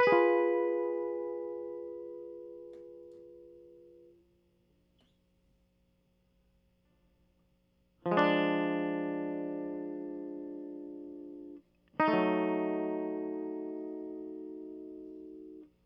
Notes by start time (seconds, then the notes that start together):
0.00 B4
0.08 G#4
0.13 F4
8.07 F3
8.13 G#3
8.18 D4
12.01 D#4
12.09 A3
12.15 F#3